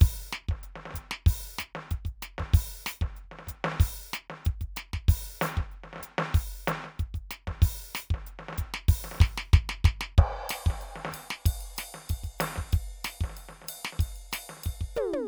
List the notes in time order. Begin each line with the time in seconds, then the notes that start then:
0.01 open hi-hat, kick
0.33 snare, hi-hat pedal
0.49 kick, snare
0.63 closed hi-hat
0.76 snare
0.86 snare
0.91 kick, snare
0.96 closed hi-hat
1.11 snare
1.27 open hi-hat, kick
1.59 closed hi-hat, kick, snare, hi-hat pedal
1.75 snare
1.91 closed hi-hat, kick
2.05 kick, closed hi-hat
2.23 closed hi-hat, snare
2.39 kick, snare
2.54 open hi-hat, kick
2.85 open hi-hat, kick, snare, hi-hat pedal
3.02 kick, snare
3.16 closed hi-hat, hi-hat pedal
3.24 kick
3.32 snare
3.39 snare
3.47 closed hi-hat, kick, snare
3.65 snare
3.72 snare
3.80 open hi-hat, kick
3.97 open hi-hat
4.14 closed hi-hat, snare, hi-hat pedal
4.30 snare
4.45 closed hi-hat, kick
4.61 kick, closed hi-hat
4.77 closed hi-hat, snare
4.94 kick, snare
5.09 open hi-hat, kick
5.42 open hi-hat, snare, hi-hat pedal
5.57 kick, snare
5.72 closed hi-hat
5.84 snare
5.93 snare
5.96 snare
5.99 kick, snare
6.01 closed hi-hat, snare
6.19 snare
6.35 open hi-hat, kick
6.51 open hi-hat
6.67 closed hi-hat, snare, hi-hat pedal
6.85 snare
7.00 closed hi-hat, kick
7.15 kick, closed hi-hat
7.31 closed hi-hat, snare
7.48 kick, snare
7.62 open hi-hat, kick
7.95 open hi-hat, snare, hi-hat pedal
8.11 kick, snare
8.27 closed hi-hat
8.39 snare
8.49 snare
8.53 snare
8.58 closed hi-hat, kick
8.74 snare
8.89 open hi-hat, kick
9.05 snare
9.12 snare
9.15 snare
9.18 kick, snare
9.22 snare
9.38 snare
9.53 kick, snare, hi-hat pedal
9.70 snare
9.85 kick, snare
10.01 snare
10.18 kick, crash
10.50 snare, hi-hat pedal, ride
10.66 kick, snare
10.81 hi-hat pedal, ride
10.96 snare
11.05 snare
11.09 kick, snare, hi-hat pedal
11.14 ride bell
11.31 snare
11.46 kick, ride
11.61 ride
11.76 snare, hi-hat pedal, ride
11.95 snare
12.10 kick, ride
12.24 kick, ride
12.39 snare, hi-hat pedal, ride
12.56 kick, snare
12.73 kick, ride
13.04 snare, hi-hat pedal, ride
13.21 kick, snare
13.30 snare
13.37 ride
13.49 snare
13.62 kick, snare
13.65 snare, hi-hat pedal
13.69 ride
13.85 snare
13.93 snare
14.00 kick, ride
14.16 ride
14.32 snare, hi-hat pedal, ride
14.50 snare
14.57 snare
14.63 snare, ride
14.66 kick, snare
14.81 kick
14.96 hi-hat pedal, mid tom, high tom
15.14 high tom